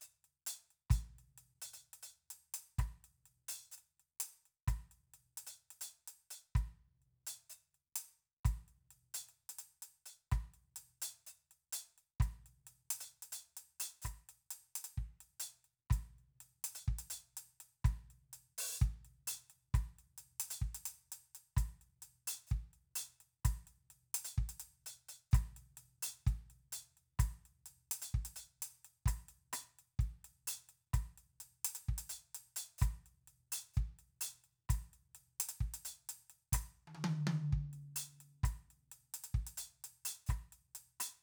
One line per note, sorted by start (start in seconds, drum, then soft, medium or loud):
0.01 closed hi-hat soft
0.01 hi-hat pedal medium
0.24 closed hi-hat soft
0.46 closed hi-hat loud
0.71 closed hi-hat soft
0.90 closed hi-hat medium
0.90 kick medium
0.90 cross-stick soft
1.19 closed hi-hat soft
1.38 closed hi-hat soft
1.62 closed hi-hat medium
1.73 closed hi-hat medium
1.93 closed hi-hat soft
2.03 closed hi-hat medium
2.30 closed hi-hat medium
2.54 closed hi-hat medium
2.79 kick medium
2.79 cross-stick medium
2.79 closed hi-hat soft
3.04 closed hi-hat soft
3.26 closed hi-hat soft
3.48 open hi-hat loud
3.71 hi-hat pedal medium
3.78 closed hi-hat soft
4.00 closed hi-hat soft
4.20 closed hi-hat loud
4.46 closed hi-hat soft
4.68 kick medium
4.68 cross-stick medium
4.68 closed hi-hat medium
4.91 closed hi-hat soft
5.14 closed hi-hat soft
5.37 closed hi-hat medium
5.47 closed hi-hat medium
5.71 closed hi-hat soft
5.81 closed hi-hat medium
6.08 closed hi-hat medium
6.30 closed hi-hat medium
6.55 kick medium
6.55 cross-stick medium
6.55 closed hi-hat soft
7.02 closed hi-hat soft
7.27 closed hi-hat loud
7.50 hi-hat pedal medium
7.74 closed hi-hat soft
7.96 closed hi-hat loud
8.45 kick medium
8.45 cross-stick medium
8.45 closed hi-hat medium
8.68 closed hi-hat soft
8.91 closed hi-hat soft
9.14 closed hi-hat loud
9.29 closed hi-hat soft
9.49 closed hi-hat medium
9.59 closed hi-hat medium
9.82 closed hi-hat medium
10.06 closed hi-hat medium
10.32 kick medium
10.32 cross-stick medium
10.32 closed hi-hat soft
10.54 closed hi-hat soft
10.76 closed hi-hat medium
11.02 closed hi-hat loud
11.27 closed hi-hat soft
11.27 hi-hat pedal medium
11.51 closed hi-hat soft
11.73 closed hi-hat loud
11.98 closed hi-hat soft
12.20 kick medium
12.20 cross-stick medium
12.20 closed hi-hat soft
12.46 closed hi-hat soft
12.67 closed hi-hat soft
12.90 closed hi-hat loud
13.00 closed hi-hat medium
13.22 closed hi-hat medium
13.32 closed hi-hat medium
13.57 closed hi-hat medium
13.80 closed hi-hat loud
14.02 kick soft
14.02 cross-stick medium
14.02 hi-hat pedal medium
14.06 closed hi-hat medium
14.29 closed hi-hat soft
14.51 closed hi-hat medium
14.75 closed hi-hat medium
14.84 closed hi-hat medium
14.97 kick soft
15.21 closed hi-hat soft
15.40 closed hi-hat loud
15.64 closed hi-hat soft
15.90 kick medium
15.90 cross-stick medium
15.90 closed hi-hat medium
16.18 closed hi-hat soft
16.40 closed hi-hat soft
16.64 closed hi-hat loud
16.75 closed hi-hat medium
16.88 kick medium
16.99 closed hi-hat medium
17.10 closed hi-hat loud
17.37 closed hi-hat medium
17.60 closed hi-hat soft
17.84 kick medium
17.84 cross-stick medium
17.84 closed hi-hat soft
18.10 closed hi-hat soft
18.33 closed hi-hat medium
18.58 open hi-hat loud
18.79 kick medium
18.79 closed hi-hat soft
18.79 hi-hat pedal soft
19.05 closed hi-hat soft
19.27 closed hi-hat loud
19.50 closed hi-hat soft
19.74 kick medium
19.74 cross-stick medium
19.74 closed hi-hat soft
19.99 closed hi-hat soft
20.18 closed hi-hat medium
20.40 closed hi-hat loud
20.50 closed hi-hat loud
20.62 kick soft
20.75 closed hi-hat medium
20.86 closed hi-hat medium
21.12 closed hi-hat medium
21.35 closed hi-hat medium
21.57 kick medium
21.57 cross-stick medium
21.57 closed hi-hat medium
21.81 closed hi-hat soft
22.02 closed hi-hat medium
22.27 closed hi-hat loud
22.47 closed hi-hat soft
22.47 hi-hat pedal soft
22.51 kick medium
22.73 closed hi-hat soft
22.96 closed hi-hat loud
23.20 closed hi-hat soft
23.45 kick medium
23.45 cross-stick medium
23.45 closed hi-hat medium
23.67 closed hi-hat soft
23.90 closed hi-hat soft
24.14 closed hi-hat loud
24.25 closed hi-hat medium
24.38 kick medium
24.49 closed hi-hat medium
24.60 closed hi-hat medium
24.86 closed hi-hat medium
25.09 open hi-hat medium
25.31 kick loud
25.31 cross-stick medium
25.31 closed hi-hat medium
25.31 hi-hat pedal soft
25.56 closed hi-hat soft
25.77 closed hi-hat soft
26.03 closed hi-hat loud
26.27 kick medium
26.27 closed hi-hat soft
26.50 closed hi-hat soft
26.72 closed hi-hat loud
26.97 closed hi-hat soft
27.19 kick medium
27.19 cross-stick medium
27.19 closed hi-hat medium
27.45 closed hi-hat soft
27.66 closed hi-hat medium
27.91 closed hi-hat loud
28.02 closed hi-hat medium
28.14 kick medium
28.25 closed hi-hat medium
28.36 closed hi-hat medium
28.62 closed hi-hat medium
28.85 closed hi-hat soft
29.06 kick medium
29.06 cross-stick medium
29.06 closed hi-hat medium
29.29 closed hi-hat soft
29.53 closed hi-hat loud
29.53 cross-stick medium
29.79 closed hi-hat soft
29.99 kick medium
29.99 closed hi-hat soft
30.24 closed hi-hat soft
30.47 closed hi-hat loud
30.69 closed hi-hat soft
30.93 kick medium
30.93 cross-stick medium
30.93 closed hi-hat medium
31.18 closed hi-hat soft
31.40 closed hi-hat medium
31.65 closed hi-hat loud
31.75 closed hi-hat medium
31.88 kick medium
31.98 closed hi-hat medium
32.09 closed hi-hat loud
32.35 closed hi-hat medium
32.56 open hi-hat loud
32.78 kick medium
32.78 cross-stick medium
32.78 hi-hat pedal medium
32.82 closed hi-hat medium
33.06 closed hi-hat soft
33.28 closed hi-hat soft
33.52 closed hi-hat loud
33.74 kick medium
33.74 closed hi-hat soft
33.74 hi-hat pedal soft
33.99 closed hi-hat soft
34.21 closed hi-hat loud
34.44 closed hi-hat soft
34.69 kick medium
34.69 cross-stick medium
34.69 closed hi-hat medium
34.74 cross-stick soft
34.93 closed hi-hat soft
35.15 closed hi-hat soft
35.40 closed hi-hat loud
35.49 closed hi-hat medium
35.61 kick medium
35.74 closed hi-hat medium
35.85 closed hi-hat medium
36.09 closed hi-hat medium
36.30 closed hi-hat soft
36.53 kick medium
36.53 cross-stick medium
36.53 closed hi-hat loud
36.87 high tom soft
36.95 high tom medium
37.04 high tom loud
37.27 high tom loud
37.53 kick medium
37.73 closed hi-hat soft
37.96 closed hi-hat loud
38.20 closed hi-hat soft
38.43 kick medium
38.43 cross-stick medium
38.43 closed hi-hat medium
38.70 closed hi-hat soft
38.92 closed hi-hat soft
39.14 closed hi-hat medium
39.24 closed hi-hat medium
39.34 kick medium
39.47 closed hi-hat medium
39.57 closed hi-hat loud
39.84 closed hi-hat medium
40.05 open hi-hat loud
40.26 kick medium
40.26 cross-stick medium
40.26 closed hi-hat soft
40.26 hi-hat pedal medium
40.52 closed hi-hat soft
40.75 closed hi-hat medium
41.00 open hi-hat loud
41.00 cross-stick medium